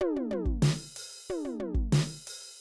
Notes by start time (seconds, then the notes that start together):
0.00 floor tom, high tom
0.16 floor tom, high tom
0.31 floor tom, high tom
0.46 kick
0.62 open hi-hat, snare
0.96 open hi-hat
1.29 floor tom, high tom
1.44 floor tom, high tom
1.59 floor tom, high tom
1.74 kick
1.92 open hi-hat, snare
2.27 open hi-hat